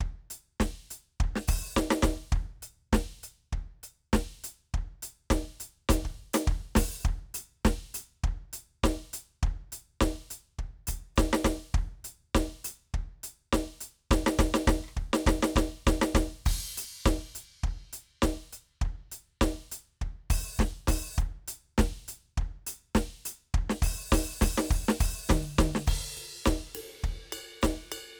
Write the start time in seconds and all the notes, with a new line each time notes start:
0.01 kick
0.31 closed hi-hat
0.60 kick, snare
0.91 closed hi-hat
1.20 kick
1.36 snare
1.48 open hi-hat, kick
1.73 hi-hat pedal
1.77 kick, snare
1.91 snare
2.03 kick, snare
2.32 kick
2.63 closed hi-hat
2.93 kick, snare
3.24 closed hi-hat
3.53 kick
3.84 closed hi-hat
4.13 kick, snare
4.44 closed hi-hat
4.74 kick
5.03 closed hi-hat
5.31 kick, snare
5.60 closed hi-hat
5.89 open hi-hat, kick, snare, hi-hat pedal
6.05 kick
6.34 closed hi-hat, snare
6.48 kick
6.76 open hi-hat, kick, snare
7.03 kick, hi-hat pedal
7.35 closed hi-hat
7.65 kick, snare
7.95 closed hi-hat
8.24 kick
8.53 closed hi-hat
8.84 kick, snare
9.14 closed hi-hat
9.43 kick
9.73 closed hi-hat
10.01 kick, snare
10.31 closed hi-hat
10.59 kick
10.87 open hi-hat, kick
11.16 kick, snare, hi-hat pedal
11.33 snare
11.45 kick, snare
11.75 kick
12.05 closed hi-hat
12.35 kick, snare
12.65 closed hi-hat
12.94 kick
13.24 closed hi-hat
13.53 kick, snare
13.81 closed hi-hat
14.11 kick, snare
14.27 snare
14.37 kick, snare, hi-hat pedal
14.54 snare
14.68 kick, snare
14.84 cross-stick
14.89 cross-stick
14.97 kick
15.14 snare
15.27 kick, snare
15.43 snare
15.56 kick, snare
15.87 kick, snare
16.02 snare
16.15 kick, snare
16.46 kick, hi-hat pedal, crash
16.78 closed hi-hat
17.06 kick, snare
17.35 closed hi-hat
17.64 kick
17.93 closed hi-hat
18.23 kick, snare
18.53 closed hi-hat
18.82 kick
19.12 closed hi-hat
19.42 kick, snare
19.72 closed hi-hat
20.02 kick
20.30 open hi-hat, kick
20.58 kick, snare, hi-hat pedal
20.88 open hi-hat, kick, snare
21.18 kick, hi-hat pedal
21.48 closed hi-hat
21.78 kick, snare
22.08 closed hi-hat
22.38 kick
22.67 closed hi-hat
22.95 kick, snare
23.26 closed hi-hat
23.54 kick
23.70 snare
23.82 open hi-hat, kick
24.12 open hi-hat, kick, snare
24.42 open hi-hat, kick, snare
24.58 snare
24.71 open hi-hat, kick
24.89 snare
25.00 open hi-hat, kick
25.30 kick, snare, high tom
25.59 kick, snare, high tom
25.75 snare
25.87 kick, hi-hat pedal, crash
26.18 ride
26.45 kick, snare, hi-hat pedal
26.75 ride
27.02 kick, hi-hat pedal, ride
27.33 ride bell
27.62 kick, snare, hi-hat pedal
27.92 ride bell